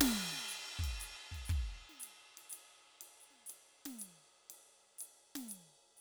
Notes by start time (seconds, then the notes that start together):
0.01 snare, crash
0.33 snare
0.48 hi-hat pedal, ride
0.65 snare
0.79 kick
0.84 ride
1.00 hi-hat pedal, ride
1.32 kick, ride
1.46 hi-hat pedal
1.50 kick, ride
1.89 snare
2.00 hi-hat pedal, ride
2.38 ride
2.50 hi-hat pedal, ride
3.01 ride
3.20 hi-hat pedal
3.31 snare
3.46 hi-hat pedal, ride
3.86 snare, ride
3.99 hi-hat pedal, ride
4.50 ride
4.99 hi-hat pedal, ride
5.36 snare, ride
5.49 hi-hat pedal, ride
5.97 hi-hat pedal